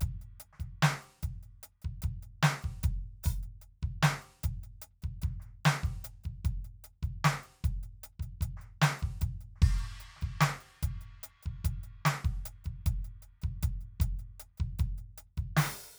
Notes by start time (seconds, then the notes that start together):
0.01 kick, closed hi-hat
0.22 closed hi-hat
0.40 closed hi-hat
0.53 snare
0.60 kick, closed hi-hat
0.83 closed hi-hat, snare
1.03 closed hi-hat
1.23 closed hi-hat, kick
1.43 closed hi-hat
1.63 closed hi-hat
1.82 kick, closed hi-hat
2.02 closed hi-hat, kick
2.23 closed hi-hat
2.43 closed hi-hat, snare
2.63 kick, closed hi-hat
2.83 closed hi-hat, kick
3.23 open hi-hat, kick, hi-hat pedal
3.43 closed hi-hat
3.62 closed hi-hat
3.82 kick, closed hi-hat
3.92 kick
4.03 closed hi-hat, snare
4.22 closed hi-hat
4.44 closed hi-hat, kick
4.64 closed hi-hat
4.82 closed hi-hat
5.02 kick, closed hi-hat
5.22 closed hi-hat, kick, snare
5.40 snare, closed hi-hat
5.65 closed hi-hat, snare
5.83 kick, closed hi-hat
6.05 closed hi-hat
6.24 kick, closed hi-hat
6.45 closed hi-hat, kick
6.65 closed hi-hat
6.84 closed hi-hat
7.03 kick, closed hi-hat
7.25 closed hi-hat, snare
7.43 closed hi-hat
7.64 closed hi-hat, kick
7.83 closed hi-hat
8.04 closed hi-hat
8.20 kick, closed hi-hat
8.41 closed hi-hat, kick
8.57 snare
8.61 closed hi-hat
8.82 closed hi-hat, snare
8.99 kick, closed hi-hat
9.21 closed hi-hat, kick
9.41 closed hi-hat
9.56 snare
9.62 kick, crash
9.79 closed hi-hat
10.00 closed hi-hat
10.17 snare
10.21 kick, closed hi-hat
10.41 closed hi-hat, snare
10.61 closed hi-hat
10.83 closed hi-hat, kick
11.01 closed hi-hat
11.23 closed hi-hat
11.43 kick, closed hi-hat
11.65 closed hi-hat, kick
11.84 closed hi-hat
12.05 closed hi-hat, snare
12.25 kick, closed hi-hat
12.46 closed hi-hat
12.65 kick, closed hi-hat
12.86 closed hi-hat, kick
13.05 closed hi-hat
13.22 closed hi-hat
13.42 kick, closed hi-hat
13.63 closed hi-hat, kick
13.81 closed hi-hat
14.00 closed hi-hat, kick
14.19 closed hi-hat
14.40 closed hi-hat
14.58 kick, closed hi-hat
14.79 closed hi-hat, kick
14.98 closed hi-hat
15.18 closed hi-hat
15.37 kick, closed hi-hat
15.57 open hi-hat, snare